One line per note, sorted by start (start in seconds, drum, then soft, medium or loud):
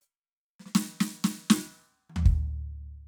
0.01 hi-hat pedal soft
0.60 snare soft
0.66 snare soft
0.75 snare loud
1.01 snare medium
1.25 snare loud
1.50 snare loud
2.10 high tom soft
2.17 floor tom loud
2.26 kick medium